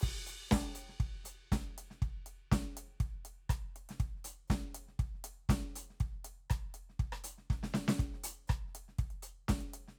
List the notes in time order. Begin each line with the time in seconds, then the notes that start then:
0.01 kick, hi-hat pedal, crash
0.26 open hi-hat, kick
0.49 kick, snare, closed hi-hat, hi-hat pedal
0.64 snare
0.75 closed hi-hat
0.88 snare
1.00 kick, closed hi-hat
1.23 closed hi-hat, snare
1.52 kick, snare, closed hi-hat
1.78 closed hi-hat
1.90 snare
2.02 kick, closed hi-hat
2.26 closed hi-hat
2.51 kick, snare, closed hi-hat
2.77 closed hi-hat
3.00 kick, closed hi-hat
3.25 closed hi-hat
3.49 kick, cross-stick, closed hi-hat
3.76 closed hi-hat
3.89 snare, closed hi-hat
4.00 kick, closed hi-hat
4.16 snare
4.24 open hi-hat
4.47 kick, snare, closed hi-hat, hi-hat pedal
4.74 closed hi-hat
4.88 snare
4.99 kick, closed hi-hat
5.14 snare
5.24 closed hi-hat
5.49 kick, snare, closed hi-hat
5.76 closed hi-hat
5.90 snare
5.93 snare
6.00 kick, closed hi-hat
6.12 snare
6.24 closed hi-hat
6.50 kick, cross-stick, closed hi-hat
6.74 closed hi-hat
6.89 snare
6.99 kick, closed hi-hat
7.12 cross-stick
7.17 cross-stick
7.24 closed hi-hat
7.38 snare
7.50 kick, snare
7.63 snare
7.74 snare
7.88 snare
7.99 kick, closed hi-hat
8.13 snare
8.24 open hi-hat
8.47 kick, cross-stick, closed hi-hat, hi-hat pedal
8.67 snare
8.75 closed hi-hat
8.88 snare
8.98 kick, closed hi-hat
9.10 closed hi-hat
9.22 open hi-hat
9.48 kick, snare, closed hi-hat
9.61 closed hi-hat
9.73 closed hi-hat
9.88 snare